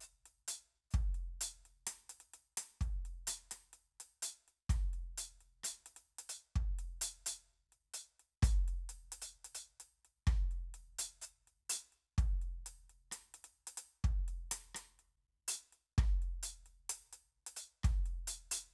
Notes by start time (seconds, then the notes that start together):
0.01 closed hi-hat, hi-hat pedal
0.26 closed hi-hat
0.48 open hi-hat
0.91 kick, closed hi-hat, hi-hat pedal
1.15 closed hi-hat
1.41 closed hi-hat
1.66 closed hi-hat
1.87 cross-stick, closed hi-hat
2.10 closed hi-hat
2.21 closed hi-hat
2.34 closed hi-hat
2.58 cross-stick, closed hi-hat
2.81 kick, closed hi-hat
3.06 closed hi-hat
3.28 closed hi-hat, cross-stick
3.52 cross-stick, closed hi-hat
3.74 closed hi-hat
4.01 closed hi-hat
4.23 closed hi-hat
4.48 closed hi-hat
4.70 kick, cross-stick, closed hi-hat
4.94 closed hi-hat
5.18 closed hi-hat
5.41 closed hi-hat
5.64 closed hi-hat, cross-stick
5.87 closed hi-hat
5.97 closed hi-hat
6.19 closed hi-hat
6.30 closed hi-hat
6.56 kick, closed hi-hat
6.79 closed hi-hat
7.02 closed hi-hat
7.27 closed hi-hat
7.52 closed hi-hat
7.73 closed hi-hat
7.94 closed hi-hat
8.20 closed hi-hat
8.43 closed hi-hat, kick, cross-stick
8.68 closed hi-hat
8.90 closed hi-hat
9.12 closed hi-hat
9.22 closed hi-hat
9.45 closed hi-hat
9.55 closed hi-hat
9.80 closed hi-hat
10.05 closed hi-hat
10.27 kick, cross-stick, closed hi-hat
10.52 closed hi-hat
10.75 closed hi-hat
10.99 closed hi-hat
11.22 hi-hat pedal
11.27 closed hi-hat
11.48 closed hi-hat
11.70 closed hi-hat
11.93 closed hi-hat
12.18 kick, closed hi-hat
12.42 closed hi-hat
12.67 closed hi-hat
12.90 closed hi-hat
13.12 cross-stick, closed hi-hat
13.35 closed hi-hat
13.45 closed hi-hat
13.68 closed hi-hat
13.78 closed hi-hat
14.04 kick, closed hi-hat
14.29 closed hi-hat
14.52 cross-stick, closed hi-hat
14.75 cross-stick, closed hi-hat
15.00 closed hi-hat
15.48 closed hi-hat
15.73 closed hi-hat
15.98 kick, cross-stick, closed hi-hat
16.22 closed hi-hat
16.43 closed hi-hat
16.66 closed hi-hat
16.90 closed hi-hat
17.13 closed hi-hat
17.47 closed hi-hat
17.57 closed hi-hat
17.84 kick, cross-stick, closed hi-hat
18.06 closed hi-hat
18.28 closed hi-hat
18.52 closed hi-hat